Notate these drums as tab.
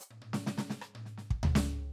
Hi-hat    |p---------------|
Snare     |---oooor-gg--o--|
High tom  |-go-----o-------|
Floor tom |------------o---|
Kick      |-----------o----|